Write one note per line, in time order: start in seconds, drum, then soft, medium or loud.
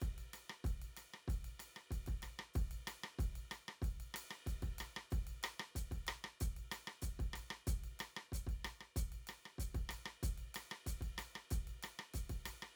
0.01 kick medium
0.01 hi-hat pedal soft
0.01 ride soft
0.19 ride soft
0.34 cross-stick soft
0.34 ride medium
0.50 cross-stick medium
0.65 kick medium
0.65 hi-hat pedal soft
0.65 ride soft
0.82 ride soft
0.97 cross-stick soft
0.97 ride medium
1.14 cross-stick soft
1.28 kick medium
1.28 hi-hat pedal soft
1.28 ride soft
1.45 ride soft
1.60 cross-stick soft
1.60 ride medium
1.77 cross-stick soft
1.91 kick soft
1.91 hi-hat pedal soft
1.91 ride soft
2.07 kick soft
2.07 ride soft
2.23 cross-stick soft
2.23 ride soft
2.40 cross-stick medium
2.54 kick medium
2.54 hi-hat pedal soft
2.54 ride soft
2.72 ride soft
2.88 cross-stick medium
2.88 ride medium
3.04 cross-stick medium
3.19 kick medium
3.19 hi-hat pedal soft
3.19 ride soft
3.36 ride soft
3.52 cross-stick medium
3.52 ride soft
3.69 cross-stick medium
3.82 kick medium
3.82 hi-hat pedal soft
3.82 ride soft
4.01 ride soft
4.15 cross-stick medium
4.15 ride medium
4.31 cross-stick medium
4.47 kick medium
4.47 hi-hat pedal soft
4.47 ride soft
4.63 kick medium
4.63 ride soft
4.79 cross-stick medium
4.79 ride medium
4.97 cross-stick medium
5.11 kick medium
5.11 hi-hat pedal soft
5.11 ride soft
5.28 ride soft
5.44 cross-stick medium
5.44 ride medium
5.60 cross-stick medium
5.76 kick soft
5.76 hi-hat pedal medium
5.76 ride soft
5.92 kick soft
5.92 ride soft
6.07 cross-stick medium
6.07 ride soft
6.25 cross-stick medium
6.41 kick medium
6.41 hi-hat pedal medium
6.41 ride soft
6.57 ride soft
6.72 cross-stick medium
6.72 ride medium
6.88 cross-stick medium
7.02 kick soft
7.02 hi-hat pedal medium
7.02 ride soft
7.20 kick medium
7.20 ride soft
7.34 cross-stick medium
7.34 ride medium
7.51 cross-stick medium
7.68 kick medium
7.68 hi-hat pedal medium
7.68 ride soft
7.84 ride soft
8.00 cross-stick medium
8.00 ride soft
8.17 cross-stick medium
8.33 kick soft
8.33 hi-hat pedal medium
8.33 ride soft
8.47 kick soft
8.47 ride soft
8.65 cross-stick medium
8.65 ride soft
8.81 cross-stick soft
8.97 kick medium
8.97 hi-hat pedal medium
8.97 ride soft
9.13 ride soft
9.28 cross-stick medium
9.28 ride medium
9.46 cross-stick soft
9.59 kick soft
9.59 hi-hat pedal medium
9.59 ride soft
9.75 kick medium
9.75 ride soft
9.90 cross-stick medium
9.90 ride medium
10.06 cross-stick medium
10.23 kick medium
10.23 hi-hat pedal medium
10.23 ride soft
10.38 ride soft
10.55 cross-stick medium
10.55 ride medium
10.72 cross-stick medium
10.87 kick soft
10.87 hi-hat pedal medium
10.87 ride soft
11.01 kick soft
11.01 ride soft
11.19 cross-stick medium
11.19 ride medium
11.36 cross-stick medium
11.51 kick medium
11.51 hi-hat pedal medium
11.51 ride soft
11.68 ride soft
11.83 cross-stick medium
11.83 ride medium
12.00 cross-stick medium
12.14 kick soft
12.14 hi-hat pedal soft
12.14 ride soft
12.30 kick soft
12.30 ride soft
12.46 cross-stick medium
12.46 ride medium
12.63 cross-stick medium